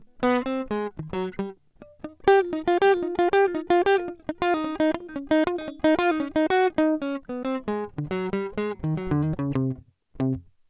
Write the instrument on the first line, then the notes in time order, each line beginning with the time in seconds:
acoustic guitar
0.24 B3
0.47 C4
0.72 G#3
1.14 F#3
1.40 G3
2.29 G4
2.40 F4
2.54 D#4
2.69 F4
2.83 G4
2.93 F4
3.04 D#4
3.20 F4
3.34 G4
3.46 F4
3.56 D#4
3.71 F4
3.87 G4
3.97 F4
4.30 F4
4.43 F4
4.55 D#4
4.66 C#4
4.81 D#4
4.96 F4
5.11 D#4
5.17 C#4
5.32 D#4
5.49 F4
5.60 D#4
5.69 C#4
5.85 D#4
6.00 F4
6.12 D#4
6.21 C#4
6.37 D#4
6.51 F#4
6.79 D#4
7.03 C#4
7.31 B3
7.46 C4
7.69 G#3
8.00 D3
8.12 F#3
8.34 G3
8.59 G#3
8.85 D#3
8.98 F#3
9.13 D3
9.24 D#3
9.40 C#3
9.57 C3
10.21 C3